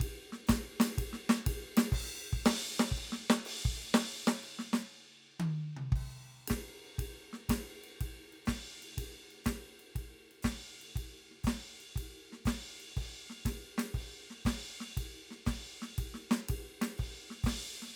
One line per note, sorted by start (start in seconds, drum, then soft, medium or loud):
0.01 kick medium
0.01 ride loud
0.33 snare soft
0.48 kick medium
0.48 snare loud
0.48 hi-hat pedal medium
0.48 ride loud
0.81 snare loud
0.81 ride loud
0.99 kick medium
0.99 ride loud
1.14 snare medium
1.30 snare loud
1.47 kick medium
1.47 hi-hat pedal soft
1.47 ride loud
1.78 snare loud
1.78 ride loud
1.93 kick medium
1.93 crash medium
2.34 kick medium
2.43 hi-hat pedal soft
2.43 ride loud
2.47 snare loud
2.80 snare loud
2.92 kick medium
2.97 ride medium
3.13 snare medium
3.31 snare loud
3.46 ride loud
3.66 kick medium
3.78 ride medium
3.95 snare loud
3.95 ride medium
4.28 snare loud
4.44 ride medium
4.60 snare medium
4.74 snare loud
5.41 high tom loud
5.78 mid tom loud
5.93 kick medium
5.93 crash soft
6.49 kick soft
6.49 snare medium
6.49 hi-hat pedal medium
6.49 ride loud
6.85 ride soft
6.99 kick medium
6.99 ride loud
7.34 snare soft
7.50 kick medium
7.50 snare loud
7.50 hi-hat pedal soft
7.50 ride loud
7.85 ride medium
8.02 kick medium
8.02 ride medium
8.33 ride soft
8.46 kick soft
8.46 snare medium
8.46 hi-hat pedal soft
8.46 ride medium
8.83 ride soft
8.98 kick soft
8.98 ride medium
9.32 ride soft
9.45 kick soft
9.45 snare medium
9.45 hi-hat pedal soft
9.45 ride loud
9.80 ride soft
9.96 kick soft
9.96 ride medium
10.32 ride soft
10.43 kick soft
10.43 snare medium
10.43 hi-hat pedal medium
10.43 ride medium
10.82 ride soft
10.97 kick soft
10.97 ride medium
11.32 snare soft
11.45 kick medium
11.45 snare loud
11.45 hi-hat pedal medium
11.45 ride medium
11.81 ride soft
11.97 kick soft
11.97 ride medium
12.33 snare soft
12.46 kick medium
12.46 snare loud
12.46 hi-hat pedal medium
12.46 ride medium
12.81 ride soft
12.98 kick medium
12.98 ride medium
13.31 snare soft
13.46 kick medium
13.46 snare medium
13.46 hi-hat pedal medium
13.46 ride loud
13.79 snare medium
13.79 ride loud
13.95 kick medium
13.95 ride medium
14.31 snare soft
14.46 kick medium
14.46 snare loud
14.46 hi-hat pedal soft
14.46 ride medium
14.81 snare soft
14.98 kick medium
14.98 ride medium
15.32 snare soft
15.47 kick medium
15.47 snare medium
15.47 hi-hat pedal soft
15.47 ride medium
15.83 snare medium
15.99 kick medium
15.99 ride medium
16.15 snare soft
16.32 snare loud
16.49 kick medium
16.49 hi-hat pedal soft
16.49 ride loud
16.82 snare medium
16.82 ride medium
16.99 kick medium
16.99 ride medium
17.31 snare soft
17.44 kick medium
17.44 snare medium
17.44 hi-hat pedal medium
17.44 ride loud
17.83 snare soft
17.89 snare soft